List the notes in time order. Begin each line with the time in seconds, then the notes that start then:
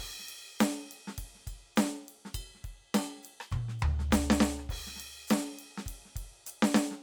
0.01 kick
0.04 kick
0.20 snare
0.29 ride
0.60 snare, hi-hat pedal, ride
0.71 snare
0.92 ride
1.08 snare
1.14 hi-hat pedal
1.19 kick, ride
1.24 kick
1.36 snare
1.40 snare
1.44 kick, snare
1.48 ride bell
1.54 kick
1.56 kick
1.76 snare, hi-hat pedal, ride bell
1.84 snare
2.04 hi-hat pedal
2.09 ride
2.26 snare
2.34 kick, hi-hat pedal, ride bell
2.41 kick
2.55 snare
2.61 kick, snare
2.65 ride
2.95 snare, hi-hat pedal, ride bell
3.23 hi-hat pedal, ride
3.41 cross-stick
3.51 kick, hi-hat pedal, mid tom
3.58 kick
3.61 kick
3.69 snare
3.80 kick, hi-hat pedal, floor tom
4.00 snare
4.11 kick, snare, hi-hat pedal
4.31 snare
4.41 snare
4.60 cross-stick
4.70 kick, crash
4.76 kick
4.79 kick
4.87 snare
4.97 snare, ride
5.28 snare, hi-hat pedal, ride
5.37 snare
5.59 ride
5.78 snare
5.86 kick, hi-hat pedal, ride
6.06 snare
6.12 kick, snare
6.17 ride
6.23 kick
6.25 kick
6.47 hi-hat pedal, ride
6.63 snare
6.75 snare, hi-hat pedal
6.92 snare